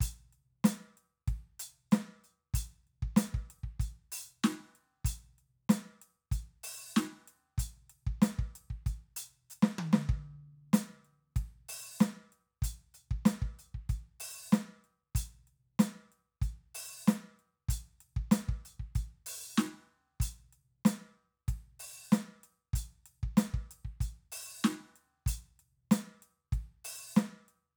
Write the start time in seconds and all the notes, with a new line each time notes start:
0.01 closed hi-hat, kick
0.33 closed hi-hat
0.65 closed hi-hat, snare
0.98 closed hi-hat
1.28 kick, closed hi-hat
1.60 open hi-hat
1.92 closed hi-hat, snare, hi-hat pedal
2.24 closed hi-hat
2.54 closed hi-hat, kick
2.87 closed hi-hat
3.03 kick
3.17 closed hi-hat, snare
3.35 kick
3.51 closed hi-hat
3.64 kick
3.80 closed hi-hat, kick
4.12 open hi-hat
4.44 snare, hi-hat pedal
4.76 closed hi-hat
5.05 closed hi-hat, kick
5.39 closed hi-hat
5.70 closed hi-hat, snare
6.02 closed hi-hat
6.32 closed hi-hat, kick
6.64 open hi-hat
6.97 snare, hi-hat pedal
7.28 closed hi-hat
7.58 closed hi-hat, kick
7.90 closed hi-hat
8.07 kick
8.22 closed hi-hat, snare
8.39 kick
8.56 closed hi-hat
8.71 kick
8.87 closed hi-hat, kick
9.17 open hi-hat
9.51 hi-hat pedal
9.63 snare
9.79 high tom
9.93 snare
10.09 kick
10.74 closed hi-hat, snare
11.05 closed hi-hat
11.36 kick, closed hi-hat
11.69 open hi-hat
12.00 closed hi-hat, snare, hi-hat pedal
12.33 closed hi-hat
12.63 closed hi-hat, kick
12.95 closed hi-hat
13.11 kick
13.26 closed hi-hat, snare
13.42 kick
13.59 closed hi-hat
13.75 kick
13.90 closed hi-hat, kick
14.20 open hi-hat
14.53 closed hi-hat, snare, hi-hat pedal
14.84 closed hi-hat
15.15 closed hi-hat, kick
15.48 closed hi-hat
15.80 closed hi-hat, snare
16.12 closed hi-hat
16.42 closed hi-hat, kick
16.75 open hi-hat
17.08 snare, hi-hat pedal, open hi-hat
17.39 closed hi-hat
17.69 closed hi-hat, kick
18.01 closed hi-hat
18.17 kick
18.32 closed hi-hat, snare
18.49 kick
18.66 closed hi-hat
18.80 kick
18.96 closed hi-hat, kick
19.27 open hi-hat
19.58 snare, hi-hat pedal
20.21 closed hi-hat, kick
20.53 closed hi-hat
20.86 closed hi-hat, snare
21.49 kick, closed hi-hat
21.80 open hi-hat
22.13 closed hi-hat, snare, hi-hat pedal
22.44 closed hi-hat
22.74 closed hi-hat, kick
23.06 closed hi-hat
23.23 kick
23.38 closed hi-hat, snare
23.54 kick
23.71 closed hi-hat
23.85 kick
24.01 closed hi-hat, kick
24.32 open hi-hat
24.65 snare, hi-hat pedal
24.96 closed hi-hat
25.27 closed hi-hat, kick
25.60 closed hi-hat
25.92 closed hi-hat, snare
26.23 closed hi-hat
26.53 kick, closed hi-hat
26.85 open hi-hat
27.16 closed hi-hat, snare, hi-hat pedal
27.49 closed hi-hat